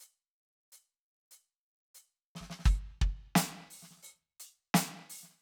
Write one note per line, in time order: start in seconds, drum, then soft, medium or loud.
0.00 hi-hat pedal medium
0.72 hi-hat pedal medium
1.31 hi-hat pedal medium
1.95 hi-hat pedal medium
2.35 snare medium
2.40 kick soft
2.40 snare soft
2.50 snare medium
2.59 snare soft
2.64 open hi-hat medium
2.64 kick loud
2.88 snare soft
3.01 kick loud
3.35 closed hi-hat loud
3.35 snare loud
3.70 open hi-hat medium
3.82 snare soft
3.90 snare soft
3.97 snare soft
4.03 open hi-hat medium
4.08 hi-hat pedal soft
4.40 closed hi-hat medium
4.74 closed hi-hat loud
4.74 snare loud
4.87 snare soft
5.10 open hi-hat medium
5.17 open hi-hat soft
5.23 snare soft
5.28 snare soft
5.32 snare soft